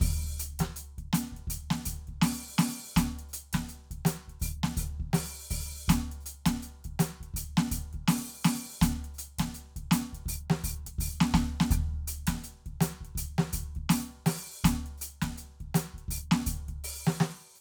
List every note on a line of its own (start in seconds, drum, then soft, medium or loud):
0.01 open hi-hat loud
0.01 kick loud
0.38 closed hi-hat loud
0.38 hi-hat pedal soft
0.59 kick medium
0.59 snare loud
0.59 closed hi-hat loud
0.76 closed hi-hat medium
0.98 kick soft
0.98 closed hi-hat soft
1.13 closed hi-hat loud
1.13 snare loud
1.32 kick soft
1.36 closed hi-hat soft
1.47 closed hi-hat loud
1.47 kick medium
1.70 snare loud
1.85 closed hi-hat loud
1.85 kick medium
2.07 kick soft
2.07 closed hi-hat soft
2.21 open hi-hat loud
2.21 snare loud
2.57 open hi-hat loud
2.57 kick soft
2.57 snare loud
2.96 open hi-hat loud
2.96 kick medium
2.96 snare loud
2.96 hi-hat pedal soft
3.19 closed hi-hat medium
3.29 hi-hat pedal soft
3.33 closed hi-hat loud
3.53 kick medium
3.53 snare loud
3.53 closed hi-hat medium
3.69 closed hi-hat medium
3.91 kick medium
3.91 closed hi-hat medium
4.05 closed hi-hat loud
4.05 snare loud
4.28 kick soft
4.28 closed hi-hat soft
4.39 open hi-hat loud
4.39 kick medium
4.39 hi-hat pedal soft
4.63 snare loud
4.77 open hi-hat loud
4.77 kick medium
4.77 hi-hat pedal soft
5.00 kick medium
5.08 kick soft
5.13 open hi-hat loud
5.13 snare loud
5.50 open hi-hat loud
5.50 kick medium
5.88 closed hi-hat loud
5.88 kick medium
5.88 snare loud
5.88 hi-hat pedal soft
6.11 closed hi-hat medium
6.20 hi-hat pedal soft
6.26 closed hi-hat loud
6.46 kick medium
6.46 snare loud
6.46 closed hi-hat loud
6.62 closed hi-hat medium
6.84 kick medium
6.84 closed hi-hat medium
6.99 closed hi-hat loud
6.99 snare loud
7.20 kick soft
7.20 closed hi-hat soft
7.34 closed hi-hat loud
7.34 kick medium
7.57 snare loud
7.71 closed hi-hat loud
7.71 kick medium
7.93 kick medium
7.93 closed hi-hat soft
8.08 open hi-hat loud
8.08 snare loud
8.44 open hi-hat loud
8.44 snare loud
8.81 closed hi-hat loud
8.81 kick medium
8.81 snare loud
8.81 hi-hat pedal soft
9.04 closed hi-hat soft
9.14 hi-hat pedal soft
9.18 closed hi-hat loud
9.38 kick medium
9.38 snare loud
9.38 closed hi-hat loud
9.54 closed hi-hat medium
9.76 kick medium
9.76 closed hi-hat medium
9.91 closed hi-hat loud
9.91 snare loud
10.13 kick soft
10.13 closed hi-hat medium
10.26 open hi-hat loud
10.26 kick medium
10.50 snare loud
10.64 open hi-hat loud
10.64 kick medium
10.86 kick soft
10.86 closed hi-hat medium
10.98 open hi-hat loud
10.98 kick medium
10.98 hi-hat pedal soft
11.20 snare loud
11.34 kick loud
11.34 snare loud
11.60 snare loud
11.71 open hi-hat loud
11.71 kick loud
11.71 cross-stick medium
11.71 hi-hat pedal soft
12.07 closed hi-hat loud
12.27 kick medium
12.27 snare loud
12.27 closed hi-hat loud
12.33 snare soft
12.44 closed hi-hat medium
12.66 kick medium
12.66 closed hi-hat soft
12.81 closed hi-hat loud
12.81 snare loud
13.01 kick soft
13.01 closed hi-hat soft
13.15 closed hi-hat loud
13.15 kick medium
13.38 snare loud
13.53 closed hi-hat loud
13.53 kick medium
13.75 kick medium
13.75 closed hi-hat soft
13.89 open hi-hat loud
13.89 snare loud
13.89 hi-hat pedal soft
14.19 kick soft
14.26 open hi-hat loud
14.26 snare loud
14.61 closed hi-hat loud
14.61 kick medium
14.61 snare loud
14.61 hi-hat pedal soft
14.86 closed hi-hat soft
14.98 closed hi-hat loud
14.98 hi-hat pedal soft
15.22 kick medium
15.22 snare loud
15.22 closed hi-hat medium
15.37 closed hi-hat medium
15.60 kick soft
15.60 closed hi-hat soft
15.74 closed hi-hat loud
15.74 snare loud
15.94 kick soft
15.98 closed hi-hat soft
16.08 open hi-hat loud
16.08 kick medium
16.14 hi-hat pedal soft
16.31 snare loud
16.39 snare soft
16.46 closed hi-hat loud
16.46 kick medium
16.68 kick medium
16.68 closed hi-hat soft
16.84 open hi-hat loud
17.07 snare loud
17.20 snare loud
17.55 hi-hat pedal soft